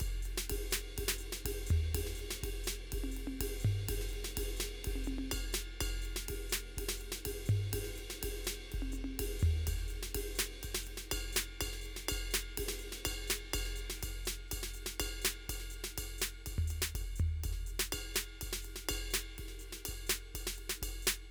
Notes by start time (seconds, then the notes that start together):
0.01 kick, ride bell
0.10 kick
0.23 hi-hat pedal, ride
0.38 snare
0.50 kick, ride
0.58 kick
0.72 snare, hi-hat pedal
0.99 kick, ride
1.05 kick, snare
1.19 hi-hat pedal, ride
1.33 snare
1.46 kick, ride
1.53 kick
1.67 floor tom, hi-hat pedal
1.95 kick, ride
2.01 kick
2.07 snare
2.16 hi-hat pedal
2.20 ride
2.31 snare
2.44 kick, ride
2.50 kick
2.65 snare, hi-hat pedal
2.93 kick, ride
3.00 kick
3.05 high tom
3.12 hi-hat pedal
3.17 ride
3.28 open hi-hat, high tom
3.41 kick, ride
3.48 kick
3.61 hi-hat pedal
3.65 floor tom
3.89 kick, ride
3.97 kick
4.02 snare
4.09 hi-hat pedal
4.14 ride
4.25 snare
4.38 kick, ride
4.44 kick
4.58 snare, hi-hat pedal
4.85 kick, ride
4.95 kick, high tom
5.05 hi-hat pedal, high tom
5.19 high tom
5.32 kick, ride bell
5.40 kick
5.54 snare, hi-hat pedal
5.81 kick, ride bell
5.89 kick
6.03 hi-hat pedal, ride
6.17 snare
6.29 kick, ride
6.37 kick
6.50 snare, hi-hat pedal
6.78 kick, ride
6.89 snare
6.98 hi-hat pedal, ride
7.13 snare
7.26 kick, ride
7.33 kick
7.47 hi-hat pedal, floor tom
7.74 kick, ride
7.80 kick
7.85 snare
7.96 hi-hat pedal, ride
8.11 snare
8.24 kick, ride
8.30 kick
8.45 snare, hi-hat pedal
8.73 kick, ride
8.81 kick, high tom
8.93 hi-hat pedal, high tom
9.05 closed hi-hat, high tom
9.20 kick, ride
9.27 kick
9.40 floor tom, hi-hat pedal
9.68 kick, ride bell
9.75 kick
9.80 snare
9.89 hi-hat pedal, ride
10.03 snare
10.15 kick, ride
10.36 snare, hi-hat pedal
10.64 kick, ride bell
10.75 snare
10.84 hi-hat pedal, ride
10.98 snare
11.12 kick, ride bell
11.19 kick
11.33 snare, hi-hat pedal
11.61 kick, ride bell
11.69 kick
11.74 snare
11.82 hi-hat pedal
11.86 ride
11.97 snare
12.09 kick, ride bell
12.32 snare, hi-hat pedal
12.58 kick, ride
12.66 kick, snare
12.80 hi-hat pedal, ride
12.93 snare
13.06 kick, ride bell
13.13 kick
13.28 snare, hi-hat pedal
13.54 kick, ride bell
13.61 kick
13.66 snare
13.77 hi-hat pedal, ride
13.91 snare
14.00 hi-hat pedal, ride bell
14.04 kick
14.10 kick
14.26 snare, hi-hat pedal
14.49 hi-hat pedal, ride bell
14.54 kick
14.64 snare
14.74 hi-hat pedal, ride
14.87 snare
15.01 kick, ride bell
15.07 kick
15.22 snare, hi-hat pedal
15.50 kick, ride bell
15.56 kick
15.60 snare
15.71 hi-hat pedal, ride
15.85 snare
15.93 hi-hat pedal
15.98 kick, ride bell
16.19 snare, hi-hat pedal
16.47 kick, ride bell
16.54 kick
16.59 floor tom
16.68 hi-hat pedal, ride bell
16.83 snare
16.96 kick, ride bell
17.02 kick
17.17 hi-hat pedal
17.21 floor tom
17.44 kick, ride bell
17.52 kick, snare
17.61 snare
17.67 hi-hat pedal, ride
17.80 snare
17.93 kick, ride bell
18.15 snare, hi-hat pedal
18.42 kick, ride bell
18.49 kick
18.54 snare
18.63 hi-hat pedal, ride
18.77 snare
18.90 kick, ride bell
19.11 snare, hi-hat pedal
19.39 kick, ride
19.46 kick, snare
19.60 hi-hat pedal, ride
19.73 snare
19.86 kick, ride bell
20.08 snare, hi-hat pedal
20.35 kick, ride bell
20.41 kick
20.48 snare
20.55 hi-hat pedal, ride
20.70 snare
20.83 kick, ride bell
20.89 kick
21.03 hi-hat pedal
21.08 snare